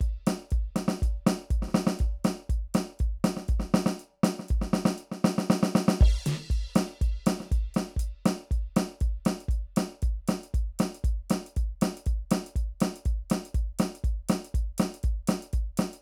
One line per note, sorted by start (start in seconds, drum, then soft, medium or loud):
0.01 closed hi-hat medium
0.01 kick medium
0.27 closed hi-hat loud
0.27 snare loud
0.51 closed hi-hat medium
0.51 kick medium
0.76 closed hi-hat medium
0.76 snare medium
0.88 snare loud
1.02 closed hi-hat medium
1.02 kick medium
1.27 closed hi-hat loud
1.27 snare loud
1.51 closed hi-hat medium
1.51 kick medium
1.63 snare medium
1.69 snare soft
1.75 snare loud
1.87 snare loud
1.99 closed hi-hat medium
1.99 kick medium
2.25 closed hi-hat loud
2.25 snare loud
2.50 closed hi-hat medium
2.50 kick medium
2.74 closed hi-hat loud
2.74 snare loud
2.99 closed hi-hat medium
2.99 kick medium
3.25 closed hi-hat loud
3.25 snare loud
3.37 snare medium
3.49 closed hi-hat medium
3.49 kick medium
3.60 snare medium
3.74 snare loud
3.86 snare loud
4.00 closed hi-hat medium
4.24 closed hi-hat loud
4.24 snare loud
4.40 snare soft
4.49 closed hi-hat medium
4.49 kick medium
4.62 snare medium
4.74 snare loud
4.86 snare loud
4.98 closed hi-hat medium
5.12 snare medium
5.25 snare loud
5.39 snare medium
5.50 snare loud
5.63 snare loud
5.76 snare loud
5.89 snare loud
6.01 kick loud
6.01 crash medium
6.26 closed hi-hat loud
6.26 snare loud
6.50 closed hi-hat medium
6.50 kick medium
6.76 closed hi-hat loud
6.76 snare loud
7.02 closed hi-hat medium
7.02 kick medium
7.27 closed hi-hat loud
7.27 snare loud
7.41 snare soft
7.47 snare soft
7.52 closed hi-hat medium
7.52 kick medium
7.75 closed hi-hat medium
7.75 snare loud
7.97 closed hi-hat loud
7.97 kick medium
8.26 closed hi-hat loud
8.26 snare loud
8.51 closed hi-hat medium
8.51 kick medium
8.77 closed hi-hat loud
8.77 snare loud
9.01 closed hi-hat medium
9.01 kick medium
9.26 closed hi-hat medium
9.26 snare loud
9.41 closed hi-hat soft
9.49 closed hi-hat medium
9.49 kick medium
9.77 closed hi-hat loud
9.77 snare loud
10.02 closed hi-hat medium
10.02 kick medium
10.28 closed hi-hat loud
10.28 snare loud
10.44 closed hi-hat medium
10.54 closed hi-hat medium
10.54 kick medium
10.79 closed hi-hat loud
10.79 snare loud
10.95 closed hi-hat medium
11.04 closed hi-hat medium
11.04 kick medium
11.30 closed hi-hat loud
11.30 snare loud
11.47 closed hi-hat medium
11.57 kick medium
11.82 closed hi-hat loud
11.82 snare loud
11.97 closed hi-hat medium
12.06 closed hi-hat medium
12.06 kick medium
12.31 closed hi-hat loud
12.31 snare loud
12.47 closed hi-hat medium
12.56 closed hi-hat medium
12.56 kick medium
12.81 closed hi-hat loud
12.81 snare loud
12.96 closed hi-hat medium
13.06 closed hi-hat medium
13.06 kick medium
13.30 closed hi-hat loud
13.30 snare loud
13.46 closed hi-hat medium
13.55 closed hi-hat medium
13.55 kick medium
13.79 closed hi-hat loud
13.79 snare loud
13.96 closed hi-hat medium
14.04 closed hi-hat medium
14.04 kick medium
14.29 closed hi-hat loud
14.29 snare loud
14.45 closed hi-hat medium
14.55 closed hi-hat medium
14.55 kick medium
14.78 closed hi-hat loud
14.78 snare loud
14.94 closed hi-hat medium
15.03 closed hi-hat medium
15.03 kick medium
15.28 closed hi-hat loud
15.28 snare loud
15.43 closed hi-hat medium
15.53 closed hi-hat medium
15.53 kick medium
15.78 closed hi-hat loud
15.78 snare loud
15.94 closed hi-hat medium